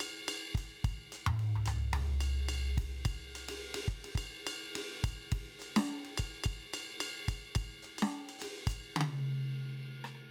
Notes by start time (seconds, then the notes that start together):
0.01 hi-hat pedal, ride bell
0.29 ride bell
0.55 kick, hi-hat pedal, ride bell
0.85 kick, cross-stick, ride bell
0.91 kick
0.95 kick
1.13 hi-hat pedal, ride bell
1.27 mid tom
1.40 ride
1.56 floor tom
1.66 hi-hat pedal, ride bell, floor tom
1.94 ride, floor tom
2.21 hi-hat pedal, ride bell
2.49 ride bell
2.78 kick, hi-hat pedal, ride
3.06 kick, ride bell
3.12 kick
3.36 hi-hat pedal, ride bell
3.49 ride
3.75 ride
3.88 kick, hi-hat pedal
4.05 ride
4.16 kick, ride bell
4.47 hi-hat pedal, ride bell
4.76 ride
5.04 kick, hi-hat pedal, ride bell
5.10 kick
5.13 kick
5.33 kick, ride
5.59 hi-hat pedal, ride bell
5.77 snare, ride bell
6.06 ride
6.18 kick, hi-hat pedal, ride bell
6.44 kick, ride bell
6.74 hi-hat pedal, ride bell
7.01 ride bell
7.29 kick, hi-hat pedal, ride bell
7.56 kick, ride bell
7.62 kick
7.83 hi-hat pedal, ride
7.99 snare, ride bell
8.30 ride bell
8.39 hi-hat pedal, ride
8.67 kick, hi-hat pedal, ride bell
8.73 kick
8.97 high tom
9.01 high tom
10.05 cross-stick
10.15 cross-stick